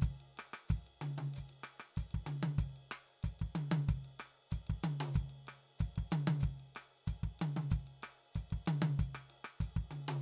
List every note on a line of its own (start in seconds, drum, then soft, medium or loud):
0.01 kick medium
0.01 hi-hat pedal medium
0.01 ride soft
0.20 ride soft
0.38 cross-stick medium
0.38 ride medium
0.53 cross-stick medium
0.69 kick medium
0.69 hi-hat pedal medium
0.69 ride soft
0.87 ride soft
1.01 high tom medium
1.01 ride medium
1.18 high tom medium
1.34 hi-hat pedal medium
1.34 ride soft
1.38 kick soft
1.49 ride soft
1.64 cross-stick medium
1.64 ride medium
1.80 cross-stick medium
1.97 kick soft
1.97 hi-hat pedal medium
1.97 ride soft
2.11 kick soft
2.11 ride soft
2.26 high tom medium
2.26 ride soft
2.43 high tom medium
2.58 kick medium
2.58 hi-hat pedal medium
2.58 ride soft
2.76 ride soft
2.91 cross-stick medium
2.91 ride soft
3.23 kick soft
3.23 hi-hat pedal medium
3.23 ride soft
3.39 kick soft
3.39 ride soft
3.55 high tom medium
3.55 ride soft
3.72 high tom loud
3.88 kick medium
3.88 hi-hat pedal medium
3.88 ride soft
4.05 ride soft
4.19 cross-stick medium
4.19 ride medium
4.51 kick soft
4.51 hi-hat pedal medium
4.51 ride soft
4.67 kick medium
4.67 ride soft
4.84 high tom medium
4.84 ride soft
5.00 high tom medium
5.14 kick medium
5.14 hi-hat pedal medium
5.14 ride soft
5.30 ride soft
5.47 cross-stick medium
5.47 ride medium
5.79 kick medium
5.79 hi-hat pedal medium
5.79 ride soft
5.96 kick soft
5.96 ride soft
6.11 high tom loud
6.11 ride soft
6.27 high tom loud
6.40 kick medium
6.40 hi-hat pedal medium
6.40 ride soft
6.60 ride soft
6.75 cross-stick medium
6.75 ride medium
7.07 kick soft
7.07 hi-hat pedal medium
7.07 ride soft
7.23 kick soft
7.23 ride soft
7.39 high tom medium
7.39 ride soft
7.57 high tom medium
7.70 kick medium
7.70 hi-hat pedal medium
7.70 ride soft
7.87 ride soft
8.03 cross-stick medium
8.03 ride medium
8.35 kick soft
8.35 hi-hat pedal medium
8.35 ride soft
8.51 kick soft
8.51 ride soft
8.66 high tom loud
8.66 ride soft
8.82 high tom loud
8.99 kick medium
8.99 hi-hat pedal medium
8.99 ride soft
9.15 cross-stick medium
9.15 ride soft
9.30 ride medium
9.44 cross-stick medium
9.60 kick medium
9.60 hi-hat pedal medium
9.60 ride soft
9.76 kick medium
9.76 ride soft
9.91 high tom medium
9.91 ride medium
10.08 high tom medium